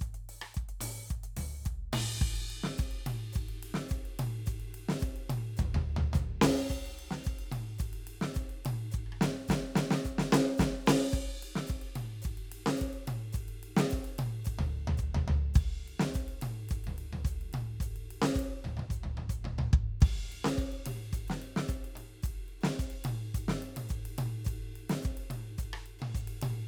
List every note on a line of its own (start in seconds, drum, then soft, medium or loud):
0.01 kick medium
0.01 closed hi-hat soft
0.01 hi-hat pedal soft
0.14 closed hi-hat soft
0.29 open hi-hat medium
0.41 cross-stick medium
0.54 kick medium
0.54 hi-hat pedal soft
0.54 open hi-hat medium
0.69 closed hi-hat soft
0.81 open hi-hat loud
0.81 high tom medium
1.08 kick medium
1.08 closed hi-hat medium
1.08 hi-hat pedal soft
1.23 closed hi-hat medium
1.36 floor tom medium
1.36 open hi-hat medium
1.64 kick medium
1.64 closed hi-hat medium
1.64 hi-hat pedal soft
1.93 high tom loud
1.93 crash loud
2.21 kick loud
2.21 hi-hat pedal soft
2.21 ride soft
2.36 ride soft
2.50 ride medium
2.63 snare medium
2.77 kick medium
2.77 hi-hat pedal medium
2.77 ride medium
2.91 ride soft
3.06 high tom loud
3.06 ride medium
3.33 kick medium
3.33 hi-hat pedal medium
3.33 ride medium
3.48 ride soft
3.63 ride medium
3.74 snare medium
3.88 kick medium
3.88 hi-hat pedal medium
3.88 ride medium
4.05 ride soft
4.19 kick soft
4.19 high tom loud
4.19 ride medium
4.46 kick medium
4.46 hi-hat pedal medium
4.46 ride medium
4.60 ride soft
4.74 ride medium
4.89 snare loud
4.99 kick medium
4.99 hi-hat pedal medium
4.99 ride medium
5.16 ride soft
5.29 high tom loud
5.29 ride medium
5.57 kick medium
5.57 floor tom loud
5.57 hi-hat pedal medium
5.74 floor tom loud
5.87 kick soft
5.96 floor tom loud
6.13 kick medium
6.13 floor tom loud
6.13 hi-hat pedal medium
6.41 snare loud
6.41 crash medium
6.69 kick medium
6.69 hi-hat pedal medium
6.73 ride medium
6.86 ride soft
6.99 ride medium
7.03 kick soft
7.11 snare medium
7.24 kick medium
7.24 hi-hat pedal medium
7.24 ride soft
7.39 ride soft
7.52 high tom loud
7.52 ride medium
7.78 kick medium
7.78 hi-hat pedal medium
7.78 ride medium
7.93 ride medium
8.07 ride medium
8.13 kick soft
8.21 snare medium
8.34 kick medium
8.34 hi-hat pedal medium
8.34 ride medium
8.49 ride soft
8.65 kick soft
8.65 high tom loud
8.65 ride medium
8.91 kick medium
8.91 hi-hat pedal medium
9.06 cross-stick soft
9.12 cross-stick soft
9.21 snare loud
9.48 kick medium
9.48 snare loud
9.48 hi-hat pedal medium
9.75 snare loud
9.91 snare loud
10.04 kick medium
10.04 hi-hat pedal medium
10.18 snare loud
10.32 snare loud
10.58 kick medium
10.58 snare loud
10.58 hi-hat pedal medium
10.86 kick soft
10.86 snare loud
10.86 crash medium
11.11 kick medium
11.11 hi-hat pedal medium
11.18 ride soft
11.42 ride medium
11.55 snare medium
11.67 kick medium
11.67 hi-hat pedal medium
11.67 ride medium
11.81 ride soft
11.95 high tom loud
11.95 ride medium
12.02 kick soft
12.22 kick medium
12.22 hi-hat pedal medium
12.22 ride medium
12.37 ride soft
12.52 ride medium
12.57 kick soft
12.66 snare medium
12.77 hi-hat pedal medium
12.81 kick medium
12.81 ride medium
12.93 ride soft
13.07 kick soft
13.07 high tom loud
13.07 ride medium
13.32 kick medium
13.32 hi-hat pedal medium
13.32 ride medium
13.48 ride soft
13.63 ride medium
13.77 snare loud
13.89 kick medium
13.89 hi-hat pedal medium
13.89 ride medium
14.04 ride medium
14.18 kick soft
14.18 high tom loud
14.18 ride medium
14.44 kick medium
14.44 hi-hat pedal medium
14.44 ride medium
14.59 floor tom loud
14.87 floor tom loud
14.97 kick medium
14.97 hi-hat pedal medium
15.14 floor tom loud
15.28 floor tom loud
15.54 kick loud
15.54 hi-hat pedal medium
15.54 ride medium
15.88 ride soft
15.99 snare loud
16.14 kick medium
16.14 hi-hat pedal medium
16.14 ride medium
16.28 ride soft
16.41 high tom loud
16.41 ride medium
16.69 kick medium
16.69 hi-hat pedal medium
16.69 ride medium
16.84 floor tom medium
16.84 ride soft
16.98 ride medium
17.13 floor tom loud
17.25 kick medium
17.25 hi-hat pedal medium
17.25 ride medium
17.41 ride soft
17.53 high tom loud
17.53 ride medium
17.80 kick medium
17.80 hi-hat pedal medium
17.80 ride medium
17.96 ride soft
18.11 ride medium
18.22 snare loud
18.34 kick medium
18.34 hi-hat pedal medium
18.39 ride medium
18.64 floor tom medium
18.64 high tom medium
18.77 floor tom medium
18.77 high tom medium
18.90 kick medium
18.90 hi-hat pedal medium
19.03 floor tom medium
19.03 high tom medium
19.17 floor tom medium
19.17 high tom medium
19.29 kick medium
19.29 hi-hat pedal medium
19.44 floor tom medium
19.44 high tom medium
19.58 floor tom medium
19.58 high tom loud
19.73 kick loud
20.01 kick loud
20.01 ride medium
20.32 ride medium
20.44 snare medium
20.56 kick medium
20.56 hi-hat pedal soft
20.56 ride soft
20.72 ride soft
20.86 high tom loud
20.86 ride loud
21.13 kick medium
21.13 hi-hat pedal medium
21.13 ride medium
21.28 snare medium
21.28 ride soft
21.42 ride medium
21.56 snare medium
21.68 kick medium
21.68 hi-hat pedal medium
21.68 ride medium
21.84 ride soft
21.95 high tom soft
21.95 ride medium
22.23 kick medium
22.23 hi-hat pedal medium
22.23 ride medium
22.48 ride soft
22.61 snare loud
22.61 ride medium
22.79 kick medium
22.79 hi-hat pedal medium
22.90 ride medium
23.04 high tom loud
23.04 ride medium
23.34 kick medium
23.34 hi-hat pedal medium
23.34 ride medium
23.48 snare loud
23.62 ride medium
23.76 high tom medium
23.76 ride medium
23.89 kick medium
23.89 hi-hat pedal medium
24.05 ride medium
24.18 high tom loud
24.18 ride medium
24.44 kick medium
24.44 hi-hat pedal medium
24.44 ride medium
24.76 ride medium
24.89 snare loud
24.89 ride medium
25.02 kick medium
25.02 hi-hat pedal medium
25.17 ride medium
25.30 high tom medium
25.30 ride medium
25.58 kick medium
25.58 hi-hat pedal medium
25.58 ride medium
25.73 cross-stick medium
25.86 ride soft
25.99 high tom loud
25.99 ride soft
26.14 kick medium
26.14 hi-hat pedal medium
26.27 ride medium
26.42 high tom loud
26.42 ride medium